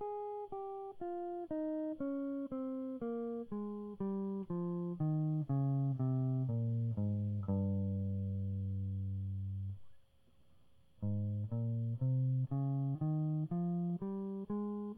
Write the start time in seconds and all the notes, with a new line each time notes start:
0.02 G#4
0.53 G4
1.02 F4
1.51 D#4
2.01 C#4
2.53 C4
3.02 A#3
3.53 G#3
4.01 G3
4.51 F3
5.01 D#3
5.51 C#3
6.01 C3
6.51 A#2
6.99 G#2
7.44 G2
7.51 G2
11.05 G#2
11.53 A#2
12.04 C3
12.53 C#3
13.03 D#3
13.52 F3
14.03 G3
14.51 G#3